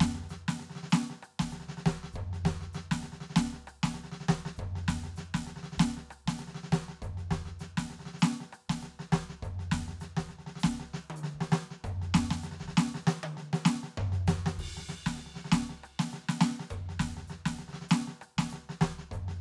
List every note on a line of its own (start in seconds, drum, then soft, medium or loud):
0.01 kick soft
0.01 snare loud
0.08 kick soft
0.16 snare soft
0.24 snare soft
0.30 snare medium
0.30 hi-hat pedal soft
0.49 snare loud
0.61 snare soft
0.71 snare soft
0.77 snare medium
0.84 snare medium
0.91 snare loud
0.91 hi-hat pedal soft
1.11 snare soft
1.24 cross-stick medium
1.41 kick soft
1.41 snare loud
1.51 snare soft
1.51 hi-hat pedal soft
1.61 snare soft
1.68 snare soft
1.68 snare medium
1.87 kick soft
1.87 snare loud
1.94 kick soft
2.04 snare medium
2.14 kick soft
2.14 floor tom medium
2.14 hi-hat pedal soft
2.22 kick soft
2.34 snare soft
2.45 kick medium
2.45 snare loud
2.52 kick soft
2.55 kick soft
2.62 snare soft
2.74 snare medium
2.74 hi-hat pedal soft
2.92 kick soft
2.92 snare loud
3.04 snare soft
3.13 snare soft
3.22 snare medium
3.31 snare soft
3.37 kick soft
3.37 snare loud
3.37 hi-hat pedal soft
3.44 kick soft
3.48 kick soft
3.54 snare soft
3.68 cross-stick medium
3.84 kick soft
3.84 snare loud
3.94 snare soft
3.94 hi-hat pedal soft
4.05 snare soft
4.13 snare medium
4.21 snare soft
4.30 kick soft
4.30 snare loud
4.46 snare medium
4.58 kick soft
4.58 floor tom loud
4.58 hi-hat pedal soft
4.66 kick soft
4.77 snare soft
4.89 kick soft
4.89 snare loud
4.96 kick soft
4.99 kick soft
5.05 snare soft
5.17 snare medium
5.17 hi-hat pedal soft
5.35 kick soft
5.35 snare medium
5.48 snare soft
5.57 snare soft
5.64 snare medium
5.73 snare medium
5.79 kick soft
5.79 snare loud
5.79 hi-hat pedal soft
5.85 kick soft
5.98 snare soft
6.12 cross-stick medium
6.28 kick soft
6.28 snare loud
6.39 snare soft
6.39 hi-hat pedal soft
6.49 snare soft
6.56 snare medium
6.64 snare medium
6.73 kick soft
6.73 snare loud
6.90 snare soft
7.03 kick soft
7.03 floor tom medium
7.03 hi-hat pedal soft
7.10 kick soft
7.13 kick soft
7.18 snare soft
7.32 kick soft
7.32 snare loud
7.39 kick soft
7.42 kick soft
7.47 snare soft
7.60 snare medium
7.60 hi-hat pedal soft
7.79 kick soft
7.79 snare medium
7.91 snare soft
8.01 snare soft
8.07 snare medium
8.15 snare soft
8.20 snare loud
8.20 hi-hat pedal soft
8.42 snare soft
8.54 cross-stick medium
8.70 kick soft
8.70 snare loud
8.82 snare soft
8.82 hi-hat pedal soft
9.00 snare medium
9.13 kick soft
9.13 snare loud
9.30 snare soft
9.44 kick soft
9.44 floor tom medium
9.44 hi-hat pedal soft
9.50 kick soft
9.60 snare soft
9.73 kick medium
9.73 snare loud
9.81 kick soft
9.89 snare soft
10.01 snare medium
10.01 hi-hat pedal soft
10.18 kick soft
10.18 snare medium
10.30 snare soft
10.40 snare soft
10.48 snare medium
10.57 snare soft
10.57 hi-hat pedal medium
10.65 kick soft
10.65 snare loud
10.73 kick soft
10.81 snare soft
10.95 snare medium
11.11 open hi-hat soft
11.11 high tom loud
11.17 hi-hat pedal medium
11.25 snare medium
11.36 kick soft
11.42 snare medium
11.53 snare loud
11.72 snare soft
11.85 kick soft
11.85 floor tom loud
11.85 hi-hat pedal soft
11.94 kick soft
12.03 snare soft
12.15 kick soft
12.15 snare loud
12.22 kick soft
12.32 snare medium
12.43 snare medium
12.43 hi-hat pedal soft
12.53 snare soft
12.58 snare soft
12.61 kick soft
12.61 snare medium
12.69 snare medium
12.78 snare loud
12.96 snare medium
13.08 snare loud
13.08 hi-hat pedal medium
13.24 high tom loud
13.38 snare medium
13.54 snare loud
13.66 snare loud
13.66 hi-hat pedal medium
13.84 snare medium
13.99 kick soft
13.99 floor tom loud
14.06 kick soft
14.08 kick soft
14.13 snare soft
14.28 kick soft
14.28 snare loud
14.28 hi-hat pedal medium
14.35 kick soft
14.47 snare loud
14.59 kick medium
14.59 crash medium
14.67 kick soft
14.78 snare soft
14.90 snare medium
14.90 hi-hat pedal soft
15.07 kick soft
15.07 snare loud
15.18 snare soft
15.27 snare soft
15.35 snare soft
15.37 snare medium
15.46 snare medium
15.53 kick soft
15.53 snare loud
15.53 hi-hat pedal medium
15.60 kick soft
15.71 snare soft
15.85 cross-stick medium
16.00 snare loud
16.11 snare medium
16.11 hi-hat pedal soft
16.30 snare loud
16.42 snare loud
16.61 snare medium
16.71 kick soft
16.71 hi-hat pedal soft
16.71 floor tom medium
16.90 snare soft
17.01 kick soft
17.01 snare loud
17.12 kick soft
17.18 snare soft
17.29 snare medium
17.29 hi-hat pedal soft
17.47 kick soft
17.47 snare loud
17.60 snare soft
17.69 snare soft
17.74 snare medium
17.82 snare soft
17.90 snare loud
17.90 hi-hat pedal medium
18.09 snare soft
18.22 cross-stick medium
18.39 kick soft
18.39 snare loud
18.50 snare medium
18.50 hi-hat pedal medium
18.70 snare medium
18.82 kick soft
18.82 snare loud
18.90 kick soft
18.93 kick soft
18.99 snare soft
19.13 kick soft
19.13 floor tom medium
19.13 hi-hat pedal soft
19.20 kick soft
19.29 snare soft